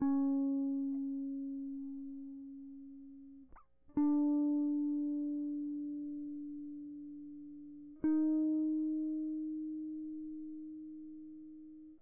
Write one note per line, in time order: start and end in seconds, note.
0.02 3.47 C#4
3.98 8.04 D4
8.04 11.98 D#4